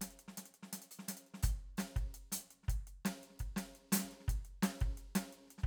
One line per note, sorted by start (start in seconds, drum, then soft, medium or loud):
0.01 snare soft
0.01 closed hi-hat loud
0.11 closed hi-hat soft
0.19 closed hi-hat soft
0.28 snare soft
0.37 snare soft
0.37 closed hi-hat medium
0.46 closed hi-hat soft
0.54 closed hi-hat soft
0.63 snare soft
0.73 snare soft
0.73 closed hi-hat loud
0.82 closed hi-hat medium
0.91 closed hi-hat soft
0.99 snare soft
1.08 snare soft
1.08 closed hi-hat loud
1.17 closed hi-hat medium
1.26 closed hi-hat soft
1.34 snare soft
1.43 open hi-hat medium
1.43 kick medium
1.43 snare soft
1.77 snare medium
1.77 closed hi-hat medium
1.77 hi-hat pedal medium
1.96 kick soft
1.96 closed hi-hat soft
2.14 closed hi-hat medium
2.32 closed hi-hat loud
2.32 snare soft
2.51 closed hi-hat soft
2.63 snare soft
2.68 kick medium
2.68 closed hi-hat medium
2.87 closed hi-hat soft
3.05 snare medium
3.05 closed hi-hat medium
3.23 closed hi-hat soft
3.30 snare soft
3.39 kick soft
3.39 closed hi-hat medium
3.56 snare medium
3.56 closed hi-hat medium
3.75 closed hi-hat soft
3.92 closed hi-hat loud
3.92 snare medium
3.96 snare medium
3.99 snare soft
4.03 kick soft
4.03 snare soft
4.11 snare soft
4.11 closed hi-hat soft
4.20 snare soft
4.28 kick medium
4.28 snare soft
4.28 closed hi-hat medium
4.45 closed hi-hat soft
4.62 snare medium
4.62 closed hi-hat medium
4.81 kick medium
4.81 closed hi-hat soft
4.97 closed hi-hat soft
5.15 snare medium
5.15 closed hi-hat loud
5.33 closed hi-hat soft
5.47 snare soft
5.47 closed hi-hat soft
5.58 snare soft
5.63 kick medium